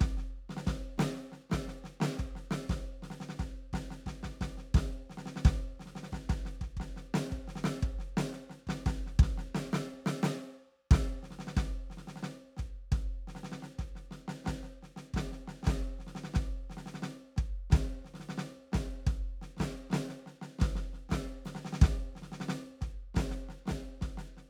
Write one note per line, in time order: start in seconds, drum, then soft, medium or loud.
0.01 kick loud
0.01 snare medium
0.18 snare soft
0.37 snare soft
0.50 snare soft
0.57 snare medium
0.67 kick medium
0.67 snare medium
0.98 snare soft
0.98 snare loud
1.16 snare soft
1.32 snare soft
1.50 snare soft
1.52 kick medium
1.52 snare medium
1.69 snare soft
1.84 snare soft
2.01 snare medium
2.01 snare loud
2.18 kick medium
2.18 snare soft
2.36 snare soft
2.51 snare medium
2.70 kick medium
2.70 snare medium
3.03 snare soft
3.11 snare soft
3.21 snare soft
3.29 snare soft
3.40 kick medium
3.40 snare soft
3.73 kick soft
3.73 snare medium
3.91 snare soft
4.06 kick soft
4.06 snare soft
4.23 kick soft
4.23 snare medium
4.41 kick medium
4.41 snare medium
4.58 snare soft
4.75 kick loud
4.75 snare medium
5.10 snare soft
5.18 snare soft
5.26 snare soft
5.36 snare medium
5.45 kick loud
5.45 snare medium
5.80 snare soft
5.86 snare soft
5.96 snare soft
6.04 snare soft
6.13 kick soft
6.13 snare medium
6.30 kick medium
6.30 snare medium
6.46 snare soft
6.62 kick medium
6.62 snare soft
6.77 kick soft
6.77 snare soft
6.97 snare soft
7.14 snare loud
7.30 kick medium
7.30 snare soft
7.48 snare soft
7.56 snare soft
7.64 snare medium
7.83 kick medium
7.83 snare soft
7.99 snare soft
8.18 snare loud
8.33 snare soft
8.50 snare soft
8.67 kick soft
8.67 snare medium
8.86 kick medium
8.86 snare medium
9.07 snare soft
9.20 kick loud
9.20 snare medium
9.38 snare soft
9.55 snare medium
9.74 snare medium
10.07 snare medium
10.24 snare loud
10.91 kick loud
10.91 snare medium
11.23 snare soft
11.31 snare soft
11.39 snare soft
11.48 snare medium
11.57 kick medium
11.57 snare medium
11.90 snare soft
11.98 snare soft
12.16 snare soft
12.23 snare medium
12.57 kick medium
12.57 snare soft
12.92 kick medium
12.92 snare soft
13.28 snare soft
13.36 snare soft
13.44 snare soft
13.52 snare soft
13.63 snare soft
13.79 kick medium
13.79 snare soft
13.96 snare soft
14.11 snare soft
14.28 snare medium
14.45 snare soft
14.47 kick soft
14.47 snare medium
14.63 snare soft
14.83 snare soft
14.97 snare soft
15.14 kick medium
15.14 snare soft
15.17 snare medium
15.32 snare soft
15.48 snare soft
15.63 snare soft
15.67 kick medium
15.67 snare medium
15.99 snare soft
16.07 snare soft
16.15 snare soft
16.24 snare soft
16.34 kick medium
16.34 snare medium
16.70 snare soft
16.77 snare soft
16.86 snare soft
16.95 snare soft
17.03 snare medium
17.37 kick medium
17.37 snare soft
17.71 snare soft
17.73 kick loud
17.73 snare medium
18.05 snare soft
18.14 snare soft
18.20 snare soft
18.29 snare medium
18.38 snare medium
18.73 kick medium
18.73 snare soft
18.73 snare medium
19.07 kick medium
19.07 snare soft
19.42 snare soft
19.57 kick soft
19.57 snare soft
19.61 snare medium
19.91 snare soft
19.93 snare medium
20.09 snare soft
20.27 snare soft
20.42 snare soft
20.59 kick loud
20.59 snare medium
20.62 snare medium
20.76 snare soft
20.94 snare soft
21.10 snare soft
21.12 kick medium
21.12 snare medium
21.45 snare medium
21.45 hi-hat pedal soft
21.55 snare soft
21.65 snare medium
21.73 snare medium
21.82 kick loud
21.82 snare medium
22.16 snare soft
22.23 snare soft
22.32 snare soft
22.41 snare medium
22.49 snare medium
22.81 kick medium
22.81 snare soft
23.15 kick medium
23.15 snare soft
23.17 snare medium
23.31 snare soft
23.49 snare soft
23.66 snare soft
23.68 kick soft
23.68 snare medium
24.02 kick medium
24.02 snare soft
24.18 snare soft
24.37 snare soft